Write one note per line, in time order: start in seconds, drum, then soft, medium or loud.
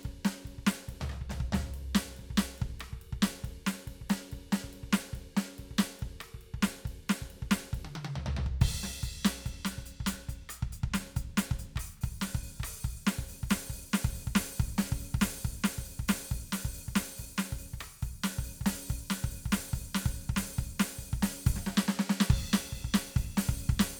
0.01 snare soft
0.01 ride soft
0.06 kick medium
0.25 snare loud
0.25 ride medium
0.41 snare soft
0.46 kick soft
0.46 ride soft
0.59 kick soft
0.67 snare loud
0.67 ride medium
0.89 kick soft
0.89 ride medium
1.01 snare medium
1.01 floor tom loud
1.10 cross-stick medium
1.10 floor tom medium
1.22 kick soft
1.30 snare medium
1.30 floor tom loud
1.41 kick medium
1.53 snare loud
1.53 floor tom loud
1.59 kick medium
1.75 ride medium
1.95 snare loud
1.95 ride medium
2.17 kick soft
2.17 ride soft
2.31 kick soft
2.38 snare loud
2.38 ride medium
2.57 snare soft
2.57 ride soft
2.62 kick medium
2.80 cross-stick medium
2.80 ride medium
2.89 snare soft
2.93 kick soft
2.93 snare soft
3.02 ride medium
3.13 kick medium
3.23 snare loud
3.23 ride medium
3.42 kick medium
3.42 snare soft
3.42 ride medium
3.67 snare loud
3.67 ride medium
3.81 snare soft
3.85 kick soft
3.85 snare soft
3.85 ride medium
4.02 kick soft
4.10 snare loud
4.10 ride medium
4.32 kick soft
4.32 ride medium
4.53 snare loud
4.53 ride medium
4.64 kick soft
4.64 snare soft
4.74 ride medium
4.84 kick soft
4.93 snare loud
4.93 ride medium
5.14 kick soft
5.14 snare soft
5.14 ride soft
5.37 snare loud
5.37 ride medium
5.59 kick soft
5.59 ride medium
5.71 kick soft
5.79 snare loud
5.79 ride medium
5.88 snare soft
5.99 snare soft
5.99 ride soft
6.03 kick medium
6.21 cross-stick medium
6.21 ride medium
6.34 kick soft
6.34 snare soft
6.42 ride soft
6.54 kick soft
6.63 snare loud
6.63 ride medium
6.86 kick medium
6.86 snare soft
6.86 ride medium
7.10 snare loud
7.10 ride medium
7.22 kick soft
7.22 snare soft
7.31 ride medium
7.43 kick medium
7.52 snare loud
7.52 ride medium
7.66 snare soft
7.73 kick medium
7.73 ride medium
7.85 high tom medium
7.96 high tom loud
8.05 high tom loud
8.16 floor tom loud
8.27 floor tom loud
8.37 floor tom loud
8.47 kick medium
8.62 kick loud
8.62 crash loud
8.84 snare medium
9.03 closed hi-hat medium
9.03 kick medium
9.25 closed hi-hat medium
9.25 snare loud
9.46 closed hi-hat soft
9.46 kick medium
9.65 closed hi-hat medium
9.65 snare medium
9.79 kick soft
9.79 snare soft
9.86 closed hi-hat medium
10.01 kick medium
10.07 closed hi-hat loud
10.07 snare loud
10.27 closed hi-hat soft
10.27 kick medium
10.27 snare soft
10.50 closed hi-hat medium
10.50 cross-stick medium
10.63 kick medium
10.69 snare soft
10.73 closed hi-hat medium
10.84 kick medium
10.94 closed hi-hat medium
10.94 snare loud
11.14 closed hi-hat medium
11.14 kick medium
11.14 snare soft
11.38 closed hi-hat loud
11.38 snare loud
11.51 kick medium
11.51 snare soft
11.60 closed hi-hat medium
11.76 open hi-hat medium
11.76 kick medium
11.76 cross-stick medium
11.97 snare soft
12.02 open hi-hat medium
12.02 kick medium
12.22 open hi-hat medium
12.22 snare medium
12.35 kick medium
12.35 snare soft
12.44 open hi-hat medium
12.60 kick medium
12.60 cross-stick medium
12.65 open hi-hat loud
12.83 kick medium
12.83 snare soft
12.87 open hi-hat soft
13.07 open hi-hat medium
13.07 snare loud
13.19 kick medium
13.29 open hi-hat medium
13.44 kick medium
13.50 open hi-hat loud
13.50 snare loud
13.70 open hi-hat medium
13.70 kick soft
13.70 snare soft
13.94 open hi-hat loud
13.94 snare loud
14.05 kick medium
14.09 snare soft
14.16 open hi-hat medium
14.28 kick medium
14.36 open hi-hat loud
14.36 snare loud
14.56 open hi-hat medium
14.56 kick loud
14.56 snare soft
14.79 open hi-hat medium
14.79 snare loud
14.92 kick medium
15.00 open hi-hat medium
15.15 kick medium
15.22 open hi-hat loud
15.22 snare loud
15.44 open hi-hat medium
15.44 kick medium
15.64 open hi-hat loud
15.64 snare loud
15.79 kick medium
15.83 open hi-hat medium
15.83 snare soft
16.00 kick medium
16.09 open hi-hat loud
16.09 snare loud
16.31 open hi-hat medium
16.31 kick medium
16.53 open hi-hat loud
16.53 snare medium
16.65 kick medium
16.72 open hi-hat medium
16.72 snare soft
16.89 kick soft
16.96 open hi-hat loud
16.96 snare loud
17.17 open hi-hat medium
17.17 kick soft
17.17 snare soft
17.38 open hi-hat medium
17.38 snare loud
17.53 kick medium
17.59 open hi-hat medium
17.74 kick soft
17.81 open hi-hat medium
17.81 cross-stick medium
18.02 open hi-hat medium
18.02 kick medium
18.24 open hi-hat loud
18.24 snare loud
18.37 kick medium
18.37 snare soft
18.44 open hi-hat medium
18.62 kick medium
18.67 open hi-hat loud
18.67 snare loud
18.88 open hi-hat medium
18.88 kick medium
18.88 snare soft
19.11 open hi-hat medium
19.11 snare loud
19.24 kick medium
19.31 open hi-hat medium
19.46 kick medium
19.53 open hi-hat loud
19.53 snare loud
19.74 open hi-hat medium
19.74 kick medium
19.95 open hi-hat loud
19.95 snare loud
20.06 kick medium
20.06 snare soft
20.17 open hi-hat soft
20.30 kick medium
20.37 open hi-hat loud
20.37 snare loud
20.59 open hi-hat medium
20.59 kick medium
20.80 open hi-hat loud
20.80 snare loud
20.99 open hi-hat medium
20.99 kick soft
21.13 kick medium
21.23 open hi-hat loud
21.23 snare loud
21.47 open hi-hat loud
21.47 kick loud
21.57 snare medium
21.67 snare loud
21.78 snare loud
21.89 snare loud
22.00 snare loud
22.10 snare loud
22.21 snare loud
22.31 kick loud
22.31 crash loud
22.54 open hi-hat medium
22.54 snare loud
22.73 open hi-hat medium
22.73 kick soft
22.85 kick medium
22.94 open hi-hat medium
22.94 snare loud
23.14 open hi-hat medium
23.14 kick loud
23.14 snare soft
23.38 open hi-hat loud
23.38 snare loud
23.49 kick medium
23.49 snare soft
23.59 open hi-hat medium
23.70 kick loud
23.80 open hi-hat loud
23.80 snare loud
23.95 snare soft